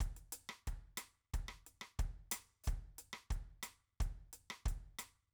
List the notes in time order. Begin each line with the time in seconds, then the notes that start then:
0.01 kick, closed hi-hat
0.17 closed hi-hat
0.33 closed hi-hat
0.50 cross-stick
0.68 kick, closed hi-hat
0.98 cross-stick, closed hi-hat
1.34 kick, closed hi-hat
1.49 cross-stick
1.67 closed hi-hat
1.82 cross-stick
2.00 kick, closed hi-hat
2.32 cross-stick, open hi-hat
2.64 kick, hi-hat pedal
2.69 closed hi-hat
2.99 closed hi-hat
3.14 cross-stick
3.31 kick, closed hi-hat
3.63 cross-stick, closed hi-hat
4.01 kick, closed hi-hat
4.34 closed hi-hat
4.51 cross-stick
4.66 kick, closed hi-hat
4.99 cross-stick, closed hi-hat